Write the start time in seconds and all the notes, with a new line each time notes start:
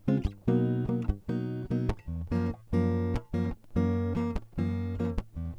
0.10 C#3 G#3 C4 F4
0.50 B2 F#3 A#3 D#4
0.86 B2 D#4
0.91 F#3 A#3
1.31 B2 F#3 A#3 D#4
1.73 B2 F#3 A#3 D#4
2.10 E2
2.34 F#2 F3 A#3 C#4
2.75 F#2 F3 A#3 C#4
3.35 F#2 F3 A#3 C#4
3.78 F#2 A#3 C#4
4.16 F#2 A#3 C#4
4.60 F#2 A#3 C#4
4.99 F#2 A#3 C#4
5.39 E2